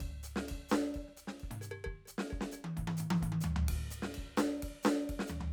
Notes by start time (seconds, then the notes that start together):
0.01 kick, ride bell
0.10 kick
0.23 hi-hat pedal
0.28 ride
0.36 snare
0.49 kick, ride bell
0.69 snare, hi-hat pedal
0.95 kick, ride bell
1.07 snare
1.17 hi-hat pedal, ride
1.28 snare
1.40 kick, ride bell
1.51 mid tom
1.62 hi-hat pedal, percussion
1.67 ride
1.72 percussion
1.85 kick, percussion
1.94 kick
2.06 hi-hat pedal, percussion
2.19 snare
2.29 hi-hat pedal, percussion
2.33 kick
2.39 kick
2.41 kick, snare
2.52 hi-hat pedal, percussion
2.65 high tom
2.77 kick, mid tom
2.88 high tom
2.97 hi-hat pedal, mid tom
3.11 high tom
3.17 hi-hat pedal
3.22 kick, mid tom
3.30 kick, high tom
3.41 floor tom, hi-hat pedal
3.57 floor tom
3.67 kick, ride, floor tom
3.79 kick
3.91 hi-hat pedal, ride
4.03 snare
4.11 hi-hat pedal, ride bell
4.18 kick
4.37 snare, hi-hat pedal
4.58 hi-hat pedal
4.63 kick, ride
4.83 snare, hi-hat pedal
5.03 hi-hat pedal
5.10 kick, ride
5.20 snare
5.28 floor tom, hi-hat pedal
5.41 floor tom